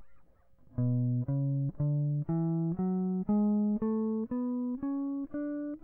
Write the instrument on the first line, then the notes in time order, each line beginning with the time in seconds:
electric guitar
0.79 B2
1.30 C#3
1.81 D3
2.30 E3
2.80 F#3
3.29 G#3
3.82 A3
4.32 B3
4.83 C#4
5.32 D4